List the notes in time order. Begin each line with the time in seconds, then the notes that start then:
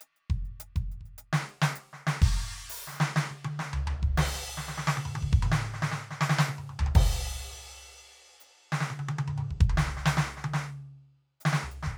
0.01 closed hi-hat
0.16 closed hi-hat
0.30 kick, closed hi-hat
0.45 closed hi-hat
0.60 closed hi-hat
0.76 kick, closed hi-hat
0.92 closed hi-hat
1.01 kick
1.06 closed hi-hat
1.18 closed hi-hat
1.33 snare
1.49 closed hi-hat
1.62 snare
1.76 closed hi-hat
1.93 snare
2.07 snare
2.22 kick, crash
2.70 open hi-hat
2.88 snare
2.92 snare, hi-hat pedal
2.96 snare
3.00 snare
3.16 snare
3.30 high tom
3.45 high tom
3.59 snare
3.73 floor tom
3.87 floor tom
4.03 kick
4.18 snare, crash
4.34 snare
4.58 snare
4.68 snare
4.78 snare
4.87 snare
4.93 hi-hat pedal
4.97 high tom
5.05 mid tom
5.15 high tom
5.23 kick
5.33 kick
5.43 mid tom
5.52 snare
5.64 snare
5.74 snare
5.82 snare
5.92 snare
6.01 snare
6.11 snare
6.21 snare
6.30 snare
6.39 snare
6.47 hi-hat pedal, high tom
6.58 mid tom
6.70 mid tom
6.79 kick, floor tom
6.86 floor tom
6.95 kick, crash
8.40 hi-hat pedal
8.72 snare
8.81 snare
8.90 high tom
8.99 high tom
9.09 high tom
9.19 high tom
9.28 mid tom
9.38 mid tom
9.51 kick
9.70 floor tom
9.78 snare
9.88 snare
9.97 snare
10.06 snare
10.17 snare
10.27 snare
10.37 snare
10.44 high tom
10.54 snare
11.40 hi-hat pedal
11.45 snare
11.53 snare
11.63 floor tom
11.71 closed hi-hat
11.83 kick, snare